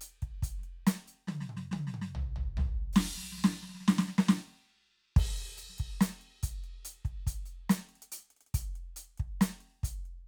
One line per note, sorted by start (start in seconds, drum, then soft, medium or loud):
0.01 closed hi-hat loud
0.22 kick soft
0.22 closed hi-hat soft
0.43 closed hi-hat loud
0.43 kick medium
0.59 snare soft
0.64 closed hi-hat soft
0.87 closed hi-hat loud
0.87 snare loud
1.08 closed hi-hat medium
1.28 snare medium
1.28 high tom loud
1.41 snare medium
1.49 high tom medium
1.57 snare medium
1.71 snare medium
1.71 high tom loud
1.87 snare medium
1.94 high tom medium
2.02 snare medium
2.15 floor tom loud
2.36 floor tom medium
2.57 snare soft
2.57 floor tom loud
2.93 snare loud
2.93 hi-hat pedal medium
2.93 crash loud
3.17 snare soft
3.23 snare soft
3.32 snare soft
3.38 snare soft
3.44 snare loud
3.53 snare soft
3.63 snare soft
3.69 snare soft
3.75 snare soft
3.80 snare soft
3.88 snare loud
3.98 snare loud
4.08 snare medium
4.29 snare loud
5.16 kick loud
5.16 crash loud
5.36 closed hi-hat soft
5.58 closed hi-hat medium
5.69 snare soft
5.78 kick medium
5.78 closed hi-hat medium
6.01 closed hi-hat loud
6.01 snare loud
6.21 closed hi-hat soft
6.43 closed hi-hat loud
6.43 kick medium
6.64 closed hi-hat soft
6.85 closed hi-hat loud
7.05 kick medium
7.05 closed hi-hat soft
7.27 closed hi-hat loud
7.27 kick medium
7.46 closed hi-hat soft
7.70 closed hi-hat loud
7.70 snare loud
7.89 closed hi-hat soft
7.96 closed hi-hat soft
8.02 closed hi-hat medium
8.12 closed hi-hat loud
8.30 closed hi-hat soft
8.37 closed hi-hat soft
8.41 closed hi-hat soft
8.47 closed hi-hat soft
8.54 closed hi-hat loud
8.54 kick medium
8.76 closed hi-hat soft
8.96 closed hi-hat loud
9.18 kick medium
9.18 closed hi-hat soft
9.41 closed hi-hat loud
9.41 snare loud
9.61 closed hi-hat soft
9.83 closed hi-hat loud
9.83 kick medium
10.05 closed hi-hat soft